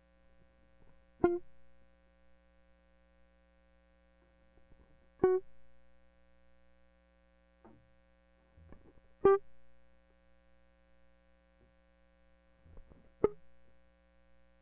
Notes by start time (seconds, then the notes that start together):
1.25 F4
5.24 F#4
9.26 G4
13.25 G#4